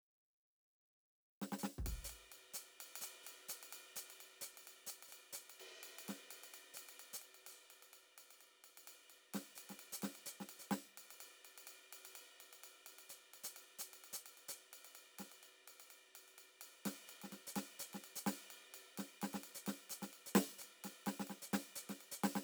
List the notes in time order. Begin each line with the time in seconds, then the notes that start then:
1.42 snare
1.52 snare
1.59 hi-hat pedal
1.63 snare
1.78 kick
1.86 kick, ride
2.04 hi-hat pedal
2.09 ride
2.32 ride
2.54 hi-hat pedal, ride
2.80 ride
2.96 ride
3.01 hi-hat pedal, ride
3.23 hi-hat pedal, ride
3.49 hi-hat pedal, ride
3.63 ride
3.70 hi-hat pedal, ride
3.96 hi-hat pedal, ride
4.10 ride
4.20 ride
4.41 hi-hat pedal, ride
4.57 ride
4.62 hi-hat pedal
4.67 ride
4.87 hi-hat pedal, ride
5.03 ride
5.08 hi-hat pedal
5.12 ride
5.33 hi-hat pedal, ride
5.50 ride
5.60 ride
5.83 ride
5.99 ride
6.08 snare, ride
6.31 ride
6.44 ride
6.54 ride
6.74 hi-hat pedal, ride
6.89 ride
6.99 ride
7.13 hi-hat pedal
7.21 ride
7.34 ride
7.46 hi-hat pedal, ride
7.70 ride
7.82 ride
7.93 ride
8.18 ride
8.31 ride
8.41 ride
8.64 ride
8.77 ride
8.87 ride
9.10 ride
9.34 snare, ride
9.55 hi-hat pedal, ride
9.69 snare, ride
9.79 ride
9.92 hi-hat pedal
10.02 snare, ride
10.15 ride
10.26 hi-hat pedal, ride
10.40 snare
10.49 ride
10.59 hi-hat pedal, ride
10.71 snare, ride
10.97 ride
11.11 ride
11.20 ride
11.45 ride
11.58 ride
11.67 ride
11.93 ride
12.05 ride
12.15 ride
12.40 ride
12.53 ride
12.63 ride
12.86 ride
12.99 ride
13.09 hi-hat pedal, ride
13.33 ride
13.44 hi-hat pedal, ride
13.56 ride
13.79 hi-hat pedal, ride
13.93 ride
14.04 ride
14.13 hi-hat pedal
14.26 ride
14.37 ride
14.48 hi-hat pedal, ride
14.73 ride
14.85 ride
14.95 ride
15.19 snare, ride
15.32 ride
15.43 ride
15.68 ride
15.80 ride
15.90 ride
16.15 ride
16.28 ride
16.38 ride
16.61 ride
16.85 snare, ride
17.07 hi-hat pedal, ride
17.22 snare, ride
17.32 snare, ride
17.47 hi-hat pedal
17.56 snare, ride
17.79 hi-hat pedal, ride
17.93 snare, ride
18.04 ride
18.16 hi-hat pedal
18.26 snare, ride
18.50 ride
18.74 ride
18.97 snare, ride
19.22 snare, ride
19.33 snare, ride
19.43 ride
19.55 hi-hat pedal
19.66 snare, ride
19.90 hi-hat pedal, ride
20.02 snare, ride
20.26 hi-hat pedal
20.35 snare, ride
20.58 hi-hat pedal, ride
20.84 snare, ride
21.06 snare, ride
21.20 snare
21.27 snare, ride
21.42 hi-hat pedal
21.53 snare, ride
21.75 hi-hat pedal, ride
21.89 snare, ride
22.01 ride
22.11 hi-hat pedal
22.24 snare, ride
22.35 snare